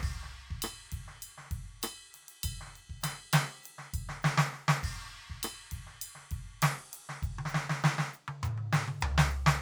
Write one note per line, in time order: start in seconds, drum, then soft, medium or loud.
0.01 kick medium
0.01 hi-hat pedal soft
0.01 crash medium
0.09 kick soft
0.14 kick soft
0.23 snare soft
0.50 kick soft
0.56 kick soft
0.62 cross-stick medium
0.62 hi-hat pedal medium
0.62 ride bell loud
0.92 kick soft
0.92 ride medium
0.98 kick soft
1.08 snare soft
1.21 hi-hat pedal soft
1.21 ride bell medium
1.38 snare soft
1.45 snare soft
1.51 kick soft
1.51 ride medium
1.58 kick soft
1.82 cross-stick medium
1.82 hi-hat pedal medium
1.82 ride bell loud
2.14 snare soft
2.14 ride medium
2.22 snare soft
2.28 ride medium
2.43 kick soft
2.43 hi-hat pedal medium
2.43 ride bell loud
2.51 kick soft
2.61 snare soft
2.66 snare soft
2.75 ride soft
2.89 kick soft
3.01 snare medium
3.01 hi-hat pedal medium
3.01 ride bell loud
3.33 snare loud
3.33 ride bell loud
3.63 hi-hat pedal medium
3.63 ride medium
3.78 snare soft
3.94 kick soft
3.94 ride bell medium
4.00 kick soft
4.09 snare medium
4.22 snare loud
4.22 hi-hat pedal medium
4.38 snare loud
4.52 snare soft
4.68 snare loud
4.82 kick soft
4.82 hi-hat pedal medium
4.82 crash medium
4.94 kick soft
5.03 snare soft
5.30 kick soft
5.43 cross-stick medium
5.43 hi-hat pedal medium
5.43 ride bell loud
5.71 kick soft
5.71 ride medium
5.77 kick soft
5.87 snare soft
6.01 hi-hat pedal medium
6.01 ride bell medium
6.15 snare soft
6.24 snare soft
6.31 kick soft
6.31 ride medium
6.38 kick soft
6.61 snare loud
6.61 hi-hat pedal medium
6.61 ride loud
6.93 hi-hat pedal medium
6.93 ride medium
7.09 snare medium
7.22 kick medium
7.22 hi-hat pedal loud
7.29 kick soft
7.38 high tom medium
7.45 snare medium
7.45 hi-hat pedal medium
7.54 snare loud
7.69 snare medium
7.82 snare loud
7.82 hi-hat pedal soft
7.98 snare loud
8.13 hi-hat pedal medium
8.28 high tom medium
8.43 hi-hat pedal loud
8.43 mid tom loud
8.58 high tom medium
8.72 snare loud
8.72 hi-hat pedal medium
8.88 high tom medium
8.88 high tom soft
9.00 hi-hat pedal medium
9.00 floor tom loud
9.18 snare loud
9.28 kick soft
9.28 hi-hat pedal medium
9.46 snare loud